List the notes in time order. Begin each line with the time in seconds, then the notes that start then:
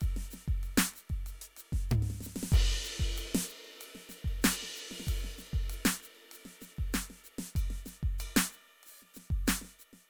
0.01 kick, hi-hat pedal, ride
0.17 snare
0.31 snare, hi-hat pedal, ride
0.49 kick, ride
0.63 hi-hat pedal, ride
0.78 snare
0.94 hi-hat pedal, ride
1.10 kick, ride
1.27 hi-hat pedal, ride
1.42 open hi-hat
1.57 hi-hat pedal, ride
1.73 kick, snare
1.90 floor tom, hi-hat pedal
2.03 snare
2.11 snare
2.15 snare
2.21 kick, snare, hi-hat pedal
2.27 snare
2.37 snare
2.44 snare
2.52 kick, hi-hat pedal, ride
2.84 hi-hat pedal, ride
3.00 kick, ride
3.17 hi-hat pedal, ride
3.35 snare
3.48 hi-hat pedal, ride
3.65 ride
3.81 hi-hat pedal, ride
3.96 snare
4.10 snare, hi-hat pedal, ride
4.25 kick, ride
4.42 snare, hi-hat pedal, ride
4.63 snare
4.76 hi-hat pedal, ride
4.92 snare
5.00 snare
5.07 kick, hi-hat pedal, ride
5.25 snare
5.38 snare, hi-hat pedal, ride
5.54 kick, ride
5.71 hi-hat pedal, ride
5.86 snare
6.01 hi-hat pedal, ride
6.16 ride
6.32 hi-hat pedal, ride
6.46 snare
6.61 snare, hi-hat pedal, ride
6.78 kick, ride
6.93 snare, hi-hat pedal, ride
7.11 snare
7.25 hi-hat pedal, ride
7.39 snare, ride
7.56 kick, hi-hat pedal, ride bell
7.71 snare
7.86 snare, hi-hat pedal, ride
8.04 kick, ride
8.19 hi-hat pedal, ride bell
8.37 snare
8.52 hi-hat pedal
8.67 ride
8.84 hi-hat pedal, ride
9.03 snare
9.15 snare, hi-hat pedal, ride
9.31 kick, ride
9.47 snare, hi-hat pedal, ride bell
9.62 snare
9.65 snare
9.80 hi-hat pedal, ride
9.94 snare, ride